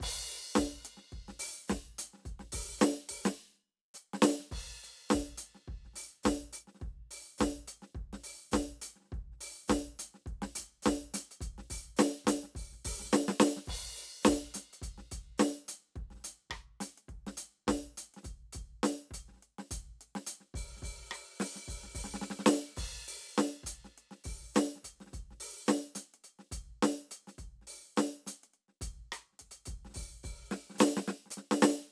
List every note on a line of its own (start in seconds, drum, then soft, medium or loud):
0.00 kick medium
0.00 hi-hat pedal soft
0.00 crash loud
0.28 open hi-hat medium
0.54 kick soft
0.54 snare loud
0.54 hi-hat pedal medium
0.85 closed hi-hat medium
0.97 snare soft
1.12 kick soft
1.12 closed hi-hat soft
1.28 snare soft
1.39 open hi-hat loud
1.68 kick soft
1.68 snare loud
1.68 hi-hat pedal medium
1.98 closed hi-hat loud
2.13 snare soft
2.18 snare soft
2.21 closed hi-hat soft
2.21 kick soft
2.21 snare soft
2.39 snare soft
2.52 open hi-hat loud
2.52 kick soft
2.78 snare loud
2.78 hi-hat pedal medium
3.09 kick soft
3.09 open hi-hat loud
3.24 snare loud
3.24 hi-hat pedal medium
3.94 hi-hat pedal medium
4.13 snare medium
4.22 snare loud
4.39 snare soft
4.51 kick medium
4.51 crash medium
4.83 open hi-hat medium
5.09 snare loud
5.09 hi-hat pedal medium
5.13 kick soft
5.37 closed hi-hat medium
5.55 snare soft
5.68 kick soft
5.85 snare soft
5.93 open hi-hat loud
5.93 snare soft
6.23 kick soft
6.23 snare loud
6.23 hi-hat pedal medium
6.53 open hi-hat loud
6.67 snare soft
6.74 snare soft
6.80 kick medium
6.80 snare soft
6.80 closed hi-hat soft
7.11 open hi-hat medium
7.38 kick soft
7.38 snare medium
7.38 hi-hat pedal medium
7.67 closed hi-hat medium
7.82 snare soft
7.95 kick medium
7.95 closed hi-hat soft
8.13 snare soft
8.23 open hi-hat medium
8.51 kick medium
8.51 snare medium
8.51 hi-hat pedal medium
8.81 open hi-hat loud
8.95 snare soft
9.00 snare soft
9.04 snare soft
9.08 snare soft
9.11 kick medium
9.11 snare soft
9.11 closed hi-hat soft
9.32 snare soft
9.39 open hi-hat loud
9.39 snare soft
9.68 kick soft
9.68 snare loud
9.68 hi-hat pedal medium
9.99 closed hi-hat loud
10.14 snare soft
10.26 kick medium
10.26 closed hi-hat soft
10.42 snare medium
10.55 closed hi-hat loud
10.55 kick soft
10.82 kick soft
10.82 snare loud
10.82 hi-hat pedal medium
11.14 closed hi-hat loud
11.14 snare medium
11.31 closed hi-hat medium
11.40 closed hi-hat medium
11.40 kick medium
11.58 snare soft
11.70 open hi-hat loud
11.70 kick soft
11.96 closed hi-hat medium
11.96 snare loud
11.96 hi-hat pedal medium
12.24 closed hi-hat loud
12.24 kick soft
12.24 snare loud
12.43 snare soft
12.55 open hi-hat medium
12.55 kick soft
12.72 snare soft
12.85 open hi-hat loud
12.85 kick medium
12.99 snare soft
13.05 snare soft
13.10 snare soft
13.10 hi-hat pedal medium
13.13 snare loud
13.28 snare loud
13.40 snare loud
13.56 snare soft
13.65 kick medium
13.65 hi-hat pedal soft
13.65 crash medium
13.95 open hi-hat medium
14.22 snare loud
14.22 hi-hat pedal medium
14.27 kick soft
14.54 closed hi-hat loud
14.54 snare soft
14.73 closed hi-hat soft
14.82 closed hi-hat medium
14.82 kick soft
14.98 snare soft
15.11 closed hi-hat medium
15.11 kick soft
15.38 snare loud
15.38 hi-hat pedal soft
15.68 closed hi-hat loud
15.95 kick soft
15.95 closed hi-hat soft
16.10 snare soft
16.15 snare soft
16.24 closed hi-hat loud
16.24 snare soft
16.50 kick soft
16.50 cross-stick medium
16.80 open hi-hat loud
16.80 snare medium
16.97 closed hi-hat soft
17.08 kick soft
17.08 closed hi-hat soft
17.27 snare medium
17.37 closed hi-hat loud
17.67 kick soft
17.67 snare medium
17.67 closed hi-hat soft
17.97 closed hi-hat medium
18.14 snare soft
18.14 closed hi-hat soft
18.23 open hi-hat medium
18.23 kick soft
18.23 snare soft
18.52 closed hi-hat medium
18.52 kick soft
18.83 closed hi-hat medium
18.83 snare medium
19.11 closed hi-hat medium
19.11 kick soft
19.28 snare soft
19.32 snare soft
19.36 snare soft
19.40 snare soft
19.40 closed hi-hat soft
19.58 snare soft
19.71 closed hi-hat loud
19.71 kick soft
20.01 closed hi-hat medium
20.15 snare medium
20.26 closed hi-hat loud
20.40 snare soft
20.54 open hi-hat medium
20.54 kick medium
20.76 snare soft
20.80 open hi-hat medium
20.80 kick soft
20.80 snare soft
21.11 open hi-hat medium
21.11 cross-stick medium
21.40 open hi-hat loud
21.40 snare medium
21.55 snare soft
21.68 open hi-hat medium
21.68 kick soft
21.83 snare soft
21.95 open hi-hat loud
21.95 kick soft
22.04 snare soft
22.14 snare medium
22.21 snare medium
22.30 snare medium
22.39 snare medium
22.46 snare loud
22.77 kick medium
22.77 hi-hat pedal medium
22.77 crash medium
23.08 open hi-hat loud
23.35 snare loud
23.35 hi-hat pedal soft
23.63 closed hi-hat loud
23.63 kick soft
23.84 snare soft
23.84 closed hi-hat soft
23.98 closed hi-hat soft
24.11 snare soft
24.24 open hi-hat medium
24.24 kick medium
24.54 snare loud
24.54 closed hi-hat medium
24.54 hi-hat pedal medium
24.76 snare soft
24.83 closed hi-hat medium
24.83 kick soft
25.00 snare soft
25.06 snare soft
25.11 closed hi-hat soft
25.11 kick soft
25.11 snare soft
25.30 snare soft
25.40 open hi-hat medium
25.66 snare loud
25.66 hi-hat pedal soft
25.95 closed hi-hat loud
25.95 snare soft
26.14 closed hi-hat soft
26.24 closed hi-hat medium
26.39 snare soft
26.51 closed hi-hat medium
26.51 kick soft
26.82 snare loud
26.82 closed hi-hat soft
27.11 closed hi-hat medium
27.27 closed hi-hat soft
27.27 snare soft
27.38 closed hi-hat soft
27.38 kick soft
27.61 snare soft
27.67 open hi-hat medium
27.96 snare loud
27.96 hi-hat pedal medium
28.26 closed hi-hat medium
28.26 snare soft
28.43 closed hi-hat soft
28.53 closed hi-hat soft
28.68 snare soft
28.81 closed hi-hat medium
28.81 kick medium
29.12 closed hi-hat medium
29.12 cross-stick medium
29.32 snare soft
29.39 kick soft
29.39 closed hi-hat medium
29.51 closed hi-hat medium
29.65 closed hi-hat medium
29.65 kick soft
29.85 snare soft
29.90 snare soft
29.93 open hi-hat medium
29.93 kick soft
29.93 snare soft
29.97 snare soft
30.23 open hi-hat medium
30.23 kick soft
30.51 snare medium
30.70 snare soft
30.74 snare soft
30.78 snare soft
30.78 hi-hat pedal loud
30.80 snare loud
30.97 snare medium
31.08 snare medium
31.26 snare soft
31.30 hi-hat pedal loud
31.37 snare soft
31.51 snare medium
31.62 snare loud
31.80 snare soft